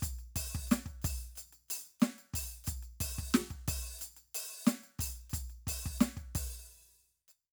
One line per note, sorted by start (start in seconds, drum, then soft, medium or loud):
0.01 kick medium
0.01 percussion medium
0.03 percussion loud
0.19 percussion soft
0.36 kick medium
0.36 percussion loud
0.55 kick medium
0.67 percussion medium
0.71 snare loud
0.71 percussion loud
0.86 kick soft
0.86 percussion soft
1.02 kick medium
1.02 percussion soft
1.05 percussion loud
1.36 percussion soft
1.38 percussion medium
1.53 percussion soft
1.69 percussion soft
1.70 percussion loud
2.00 snare loud
2.00 percussion soft
2.02 percussion medium
2.18 percussion soft
2.33 kick medium
2.33 percussion soft
2.35 percussion loud
2.64 percussion medium
2.67 kick medium
2.67 percussion loud
2.83 percussion soft
3.00 kick medium
3.00 percussion loud
3.18 kick medium
3.31 snare loud
3.31 percussion medium
3.34 percussion loud
3.50 kick soft
3.50 percussion soft
3.68 kick medium
3.68 percussion loud
3.99 percussion medium
4.01 percussion loud
4.17 percussion medium
4.35 percussion loud
4.65 snare loud
4.65 percussion medium
4.67 percussion loud
4.83 percussion soft
4.99 kick medium
4.99 percussion soft
5.01 percussion loud
5.30 kick medium
5.30 percussion medium
5.34 percussion loud
5.50 percussion soft
5.67 kick medium
5.67 percussion loud
5.86 kick medium
5.98 snare loud
5.98 percussion medium
6.01 percussion loud
6.17 kick soft
6.17 percussion soft
6.35 kick medium
6.35 percussion loud
7.28 percussion soft